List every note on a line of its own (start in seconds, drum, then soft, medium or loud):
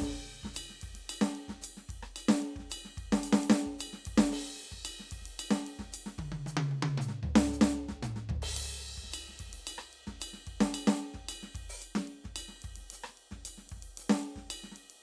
0.01 kick medium
0.01 hi-hat pedal medium
0.01 crash medium
0.43 kick soft
0.43 snare soft
0.54 hi-hat pedal medium
0.54 ride bell loud
0.70 snare soft
0.81 kick soft
0.81 ride medium
0.89 kick soft
0.94 snare soft
0.94 ride medium
1.09 hi-hat pedal medium
1.09 ride bell loud
1.21 snare medium
1.35 ride soft
1.48 kick soft
1.48 snare soft
1.53 kick soft
1.61 hi-hat pedal medium
1.61 ride bell medium
1.77 snare soft
1.89 kick soft
1.89 ride medium
1.95 kick soft
2.02 cross-stick medium
2.16 hi-hat pedal medium
2.16 ride bell loud
2.28 snare loud
2.42 ride soft
2.56 kick soft
2.56 snare soft
2.70 hi-hat pedal medium
2.70 ride bell loud
2.85 snare soft
2.97 kick soft
2.97 ride soft
3.04 kick soft
3.12 snare medium
3.23 hi-hat pedal medium
3.23 ride bell medium
3.32 snare loud
3.43 ride medium
3.50 snare loud
3.66 kick soft
3.78 hi-hat pedal medium
3.78 ride bell loud
3.93 snare soft
4.05 kick soft
4.05 ride medium
4.13 kick soft
4.16 kick soft
4.16 snare loud
4.32 hi-hat pedal medium
4.32 crash loud
4.71 kick soft
4.71 snare soft
4.85 hi-hat pedal medium
4.85 ride bell loud
4.99 snare soft
5.06 cross-stick soft
5.11 kick soft
5.11 ride medium
5.18 kick soft
5.18 snare soft
5.25 ride medium
5.39 hi-hat pedal medium
5.39 ride bell loud
5.50 snare medium
5.55 cross-stick soft
5.67 ride medium
5.79 kick soft
5.79 snare soft
5.92 hi-hat pedal medium
5.92 ride bell medium
6.06 snare soft
6.18 kick soft
6.18 high tom medium
6.32 high tom medium
6.46 hi-hat pedal medium
6.46 high tom medium
6.57 high tom loud
6.71 high tom medium
6.82 high tom loud
6.88 kick soft
6.97 hi-hat pedal medium
6.97 mid tom loud
7.08 snare soft
7.23 floor tom medium
7.35 snare loud
7.50 snare soft
7.50 hi-hat pedal medium
7.61 snare loud
7.88 kick soft
7.88 snare soft
8.02 hi-hat pedal medium
8.02 mid tom loud
8.16 snare soft
8.29 kick soft
8.29 floor tom medium
8.35 kick soft
8.42 crash loud
8.56 hi-hat pedal medium
8.56 ride loud
8.83 ride soft
8.97 kick soft
9.03 snare soft
9.11 hi-hat pedal medium
9.11 ride bell loud
9.29 snare soft
9.35 cross-stick soft
9.39 kick soft
9.39 ride medium
9.46 kick soft
9.46 snare soft
9.53 snare soft
9.53 ride medium
9.67 hi-hat pedal medium
9.67 ride bell loud
9.78 cross-stick medium
9.93 ride soft
10.07 kick soft
10.07 snare soft
10.20 hi-hat pedal medium
10.20 ride bell loud
10.33 snare soft
10.47 kick soft
10.47 ride soft
10.60 snare loud
10.74 hi-hat pedal medium
10.74 ride bell loud
10.87 snare loud
10.99 ride soft
11.14 kick soft
11.14 snare soft
11.28 hi-hat pedal medium
11.28 ride bell loud
11.43 snare soft
11.54 kick soft
11.54 ride medium
11.61 kick soft
11.69 open hi-hat loud
11.80 hi-hat pedal medium
11.80 ride bell medium
11.95 snare medium
12.07 ride soft
12.24 kick soft
12.24 snare soft
12.36 hi-hat pedal medium
12.36 ride bell loud
12.48 snare soft
12.56 cross-stick soft
12.62 kick soft
12.62 ride medium
12.70 kick soft
12.76 snare soft
12.76 ride medium
12.79 snare soft
12.90 hi-hat pedal medium
12.90 ride medium
13.03 cross-stick medium
13.09 cross-stick soft
13.17 ride soft
13.31 kick soft
13.31 snare soft
13.37 kick soft
13.45 hi-hat pedal medium
13.45 ride bell medium
13.57 snare soft
13.66 snare soft
13.66 ride medium
13.71 kick soft
13.76 snare soft
13.81 snare soft
13.81 ride medium
13.97 hi-hat pedal medium
13.97 ride medium
14.09 snare loud
14.23 ride soft
14.35 kick soft
14.35 snare soft
14.50 hi-hat pedal medium
14.50 ride bell loud
14.63 snare soft
14.71 snare soft
14.76 ride medium
14.90 ride medium